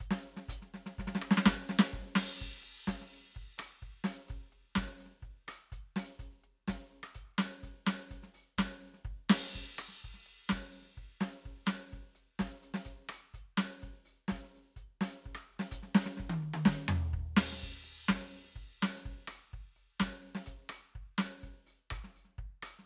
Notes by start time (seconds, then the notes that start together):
0.01 closed hi-hat, kick
0.12 snare
0.25 open hi-hat
0.37 snare
0.49 closed hi-hat, kick
0.63 snare
0.75 snare
0.87 snare
0.99 kick, snare
1.08 snare
1.16 snare
1.23 cross-stick
1.32 snare
1.38 snare
1.44 kick, snare, hi-hat pedal
1.70 snare
1.80 snare
1.94 kick
2.16 snare, crash
2.38 cross-stick
2.42 kick
2.64 open hi-hat
2.88 closed hi-hat, kick, snare
3.02 snare
3.13 open hi-hat
3.21 snare
3.26 snare
3.29 snare
3.36 kick, closed hi-hat
3.59 open hi-hat, cross-stick
3.83 kick, closed hi-hat
4.05 open hi-hat, snare
4.29 closed hi-hat, kick
4.38 snare
4.43 snare
4.53 open hi-hat
4.76 closed hi-hat, kick, snare
4.88 snare
5.01 open hi-hat
5.06 snare
5.12 snare
5.16 snare
5.18 snare
5.23 kick, closed hi-hat
5.49 open hi-hat, cross-stick
5.73 closed hi-hat, kick
5.97 open hi-hat, snare
6.20 closed hi-hat, kick
6.31 snare
6.35 snare
6.45 open hi-hat
6.69 closed hi-hat, kick, snare
6.93 open hi-hat
7.04 cross-stick
7.15 closed hi-hat, kick
7.39 open hi-hat, snare
7.64 closed hi-hat, kick
7.87 open hi-hat, snare
8.12 closed hi-hat, kick
8.24 snare
8.28 snare
8.31 open hi-hat, snare
8.59 closed hi-hat, kick, snare
8.73 snare
8.84 open hi-hat
8.95 snare
9.03 kick, snare
9.07 closed hi-hat
9.30 snare, crash
9.56 kick
9.79 open hi-hat, cross-stick
9.89 snare
10.03 kick, open hi-hat
10.15 snare
10.18 snare
10.22 snare
10.26 open hi-hat
10.50 open hi-hat, kick, snare
10.74 open hi-hat
10.83 snare
10.87 snare
10.90 snare
10.98 closed hi-hat, kick
11.21 open hi-hat, snare
11.46 closed hi-hat, kick
11.67 closed hi-hat, snare
11.91 open hi-hat, kick, snare
11.97 snare
12.16 open hi-hat
12.40 closed hi-hat, kick, snare
12.64 open hi-hat
12.75 snare
12.86 closed hi-hat, kick
13.10 open hi-hat, cross-stick
13.35 closed hi-hat, kick
13.58 open hi-hat, snare
13.83 closed hi-hat, kick, snare
13.89 snare
14.06 open hi-hat
14.29 open hi-hat, kick, snare
14.45 snare
14.55 open hi-hat, snare
14.61 snare
14.63 snare
14.77 closed hi-hat, kick
15.02 open hi-hat, snare
15.26 kick, open hi-hat
15.36 cross-stick
15.49 open hi-hat
15.60 snare
15.72 closed hi-hat, kick
15.84 snare
15.96 snare
16.07 snare
16.18 kick, snare
16.30 high tom
16.43 snare
16.55 high tom
16.66 kick, snare
16.89 floor tom
17.10 kick, hi-hat pedal
17.20 kick
17.37 snare, crash
17.53 snare
17.64 kick
17.85 open hi-hat
18.09 open hi-hat, kick, snare
18.22 snare
18.35 open hi-hat, snare
18.40 snare
18.44 snare
18.52 kick, snare
18.58 closed hi-hat
18.83 open hi-hat, snare
18.98 snare
19.06 kick, closed hi-hat
19.28 open hi-hat, cross-stick
19.53 kick, open hi-hat
19.77 open hi-hat
20.00 open hi-hat, kick, snare
20.24 open hi-hat
20.36 snare
20.47 closed hi-hat, kick
20.70 open hi-hat, cross-stick
20.95 kick, closed hi-hat
21.19 open hi-hat, snare
21.42 open hi-hat, kick
21.67 open hi-hat
21.91 open hi-hat, kick, cross-stick
22.05 snare
22.16 open hi-hat
22.25 snare
22.30 snare
22.34 snare
22.39 kick, closed hi-hat
22.63 open hi-hat, cross-stick
22.80 snare